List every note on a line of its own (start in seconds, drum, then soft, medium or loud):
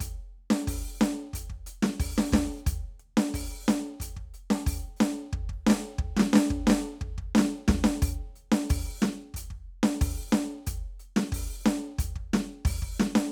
0.01 closed hi-hat loud
0.01 kick medium
0.01 snare soft
0.51 snare loud
0.68 open hi-hat loud
0.68 kick loud
1.00 closed hi-hat medium
1.00 snare loud
1.00 hi-hat pedal soft
1.34 closed hi-hat loud
1.34 kick medium
1.50 kick medium
1.67 closed hi-hat medium
1.83 snare loud
2.00 open hi-hat loud
2.00 kick loud
2.18 snare loud
2.33 kick loud
2.33 snare loud
2.60 hi-hat pedal soft
2.67 closed hi-hat loud
2.67 kick loud
3.00 closed hi-hat soft
3.18 snare loud
3.35 open hi-hat loud
3.35 kick medium
3.67 closed hi-hat medium
3.67 snare loud
3.67 hi-hat pedal soft
4.01 closed hi-hat loud
4.01 kick medium
4.17 kick medium
4.34 closed hi-hat medium
4.51 snare loud
4.67 open hi-hat loud
4.67 kick loud
4.97 kick soft
4.97 snare loud
4.97 hi-hat pedal soft
5.33 kick loud
5.50 kick medium
5.54 crash soft
5.54 ride soft
5.67 snare loud
5.71 snare loud
5.99 kick loud
6.17 snare loud
6.20 snare loud
6.34 snare loud
6.36 snare loud
6.51 kick medium
6.51 snare soft
6.68 snare loud
6.71 snare loud
7.02 kick medium
7.18 kick medium
7.23 crash soft
7.36 snare loud
7.39 snare loud
7.68 kick loud
7.68 snare loud
7.85 snare loud
8.03 open hi-hat loud
8.03 kick loud
8.36 closed hi-hat soft
8.36 kick soft
8.52 snare loud
8.58 cross-stick soft
8.70 open hi-hat loud
8.70 kick loud
9.02 snare loud
9.02 hi-hat pedal soft
9.35 closed hi-hat loud
9.35 kick medium
9.51 kick medium
9.84 snare loud
10.02 open hi-hat loud
10.02 kick loud
10.32 snare loud
10.32 hi-hat pedal soft
10.67 closed hi-hat loud
10.67 kick medium
11.00 closed hi-hat soft
11.17 snare loud
11.33 open hi-hat loud
11.33 kick loud
11.64 snare loud
11.64 hi-hat pedal medium
11.99 closed hi-hat loud
11.99 kick loud
12.16 kick medium
12.34 snare loud
12.66 open hi-hat loud
12.66 kick loud
12.66 snare soft
12.83 kick medium
12.97 snare loud
12.97 hi-hat pedal soft
13.16 snare loud